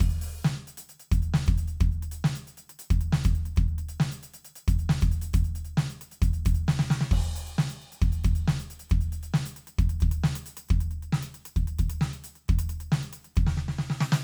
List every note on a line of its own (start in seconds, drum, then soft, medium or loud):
0.01 kick loud
0.01 percussion medium
0.10 percussion medium
0.22 percussion loud
0.33 percussion soft
0.44 snare loud
0.44 percussion soft
0.57 percussion soft
0.68 percussion medium
0.78 percussion loud
0.90 percussion medium
1.00 percussion medium
1.12 kick loud
1.12 percussion medium
1.23 percussion medium
1.35 snare loud
1.47 kick loud
1.47 percussion medium
1.58 percussion medium
1.81 kick loud
1.81 percussion medium
1.92 percussion soft
2.03 percussion medium
2.12 percussion medium
2.25 snare loud
2.36 percussion medium
2.48 percussion medium
2.58 percussion medium
2.70 percussion medium
2.80 percussion loud
2.91 kick loud
2.91 percussion medium
3.02 percussion medium
3.13 snare loud
3.25 kick loud
3.25 percussion medium
3.36 percussion medium
3.46 percussion medium
3.57 kick loud
3.57 percussion medium
3.69 percussion soft
3.79 percussion medium
3.89 percussion medium
4.01 snare loud
4.12 percussion medium
4.24 percussion medium
4.34 percussion medium
4.45 percussion medium
4.56 percussion medium
4.69 kick loud
4.69 percussion medium
4.80 percussion medium
4.90 snare loud
5.02 kick loud
5.02 percussion medium
5.12 percussion medium
5.34 kick loud
5.34 percussion medium
5.45 percussion medium
5.56 percussion medium
5.65 percussion medium
5.78 snare loud
5.90 percussion medium
6.02 percussion loud
6.12 percussion medium
6.22 kick loud
6.22 percussion medium
6.34 percussion medium
6.46 kick loud
6.46 percussion medium
6.55 percussion medium
6.68 snare loud
6.68 percussion soft
6.80 snare loud
6.91 snare loud
7.02 snare loud
7.12 kick loud
7.12 crash loud
7.23 percussion medium
7.37 percussion medium
7.48 percussion medium
7.59 snare loud
7.70 percussion medium
7.82 percussion soft
7.93 percussion medium
8.02 kick loud
8.02 percussion medium
8.13 percussion medium
8.25 kick loud
8.25 percussion medium
8.36 percussion medium
8.48 snare loud
8.60 percussion medium
8.71 percussion medium
8.80 percussion medium
8.91 kick loud
8.91 percussion medium
9.02 percussion medium
9.13 percussion medium
9.24 percussion medium
9.35 snare loud
9.46 percussion loud
9.57 percussion medium
9.68 percussion medium
9.79 kick loud
9.79 percussion medium
10.01 kick loud
10.01 percussion medium
10.12 percussion loud
10.24 snare loud
10.36 percussion loud
10.47 percussion loud
10.58 percussion loud
10.70 kick loud
10.70 percussion medium
10.81 percussion medium
10.92 percussion medium
11.03 percussion medium
11.13 snare loud
11.23 percussion medium
11.35 percussion medium
11.46 percussion loud
11.57 kick loud
11.57 percussion medium
11.68 percussion medium
11.79 kick loud
11.79 percussion medium
11.90 percussion loud
12.02 snare loud
12.14 percussion medium
12.25 percussion loud
12.36 percussion medium
12.49 kick loud
12.49 percussion medium
12.60 percussion loud
12.70 percussion loud
12.81 percussion medium
12.93 snare loud
13.04 percussion medium
13.14 percussion loud
13.25 percussion medium
13.37 kick loud
13.37 percussion medium
13.47 snare medium
13.58 snare medium
13.69 snare medium
13.79 snare medium
13.91 snare medium
14.01 snare loud
14.13 snare loud